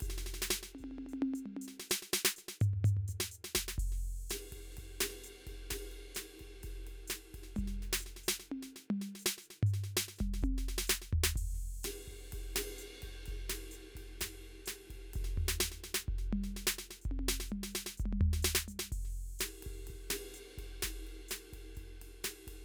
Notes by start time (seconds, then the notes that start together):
0.01 kick, hi-hat pedal, ride
0.09 kick, snare
0.18 snare
0.27 snare
0.34 snare
0.42 snare
0.51 snare
0.63 snare
0.75 hi-hat pedal, high tom
0.81 kick, high tom
0.92 high tom
0.99 high tom
1.07 hi-hat pedal, high tom
1.14 high tom
1.23 high tom
1.34 hi-hat pedal, high tom
1.46 mid tom
1.57 high tom
1.62 hi-hat pedal
1.68 snare
1.80 snare
1.90 snare, hi-hat pedal
2.03 snare
2.13 snare, hi-hat pedal
2.25 snare
2.37 snare, hi-hat pedal
2.49 snare
2.61 hi-hat pedal, floor tom
2.74 floor tom
2.85 hi-hat pedal, floor tom
2.97 floor tom
3.08 floor tom, hi-hat pedal
3.21 snare
3.32 hi-hat pedal
3.45 snare
3.55 kick, snare, hi-hat pedal
3.61 kick
3.69 snare
3.79 kick, hi-hat pedal, crash
3.90 kick, snare
4.30 snare, hi-hat pedal, ride
4.53 kick, ride
4.58 kick
4.72 snare
4.77 kick, hi-hat pedal, ride
5.01 snare, ride
5.10 snare
5.24 hi-hat pedal, ride
5.47 kick, ride
5.53 kick
5.71 kick, snare, hi-hat pedal, ride
5.77 kick
5.92 ride
6.15 snare, hi-hat pedal, ride
6.40 kick, ride
6.54 snare
6.63 kick, hi-hat pedal, ride
6.87 ride
7.08 snare, hi-hat pedal, ride
7.35 kick, ride
7.40 kick
7.44 snare
7.56 kick, hi-hat pedal, mid tom
7.66 kick, snare
7.83 snare
7.93 snare
8.00 snare, hi-hat pedal
8.07 snare
8.17 snare
8.24 hi-hat pedal
8.29 snare
8.40 snare
8.52 high tom
8.63 snare
8.76 snare
8.91 mid tom
9.02 snare
9.16 snare
9.20 hi-hat pedal
9.26 snare
9.38 snare, hi-hat pedal
9.51 snare
9.63 hi-hat pedal, floor tom
9.74 snare
9.97 snare
10.09 snare
10.17 snare, hi-hat pedal
10.21 kick, mid tom
10.30 kick, snare
10.42 kick, hi-hat pedal, high tom
10.58 snare
10.69 snare
10.79 snare
10.88 snare, hi-hat pedal
11.02 snare
11.13 kick, floor tom
11.20 kick
11.24 snare
11.34 kick, hi-hat pedal
11.38 crash
11.44 kick
11.55 snare
11.84 snare, hi-hat pedal, ride
12.05 kick, hi-hat pedal
12.13 kick
12.17 snare
12.32 kick, hi-hat pedal, ride
12.39 kick
12.56 snare, ride
12.79 hi-hat pedal, ride
13.03 kick, ride
13.09 kick
13.26 kick, hi-hat pedal, ride
13.34 kick
13.50 snare, ride
13.72 hi-hat pedal, ride
13.96 kick, ride
14.01 kick
14.20 kick, snare, hi-hat pedal, ride
14.27 kick
14.66 snare, hi-hat pedal, ride
14.91 kick, ride
14.96 kick
15.14 kick, hi-hat pedal, ride
15.23 kick, snare
15.38 floor tom
15.49 snare
15.61 snare
15.72 snare
15.84 snare
15.95 snare
16.09 kick
16.16 kick, snare
16.33 mid tom
16.44 snare
16.57 snare
16.67 snare
16.79 snare
16.91 snare
17.02 kick, hi-hat pedal
17.12 kick, high tom
17.20 high tom
17.29 snare
17.41 snare
17.47 hi-hat pedal
17.52 mid tom
17.64 snare
17.71 hi-hat pedal
17.75 snare
17.87 snare
17.98 kick, hi-hat pedal
18.06 kick, mid tom
18.13 mid tom
18.20 kick, floor tom
18.34 snare
18.43 snare, hi-hat pedal
18.55 snare
18.68 hi-hat pedal, mid tom
18.80 snare
18.92 kick, crash
19.05 snare
19.40 snare, hi-hat pedal, ride
19.63 kick, ride
19.69 kick, snare
19.75 snare
19.88 kick, hi-hat pedal, ride
19.96 kick
20.11 snare, ride
20.34 hi-hat pedal, ride
20.46 snare
20.58 kick, ride
20.64 kick
20.83 kick, snare, hi-hat pedal, ride
20.89 kick
21.07 ride
21.29 snare, hi-hat pedal, ride
21.53 kick, ride
21.75 kick, hi-hat pedal, ride
21.83 kick
22.02 ride
22.24 snare, hi-hat pedal, ride
22.48 kick, ride